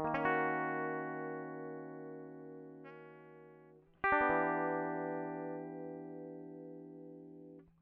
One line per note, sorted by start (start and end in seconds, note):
0.00 4.10 D#3
0.06 3.80 A#3
0.15 3.74 C#4
0.26 3.80 F#4
4.05 7.63 G4
4.13 7.64 D4
4.22 7.63 B3
4.31 7.63 E3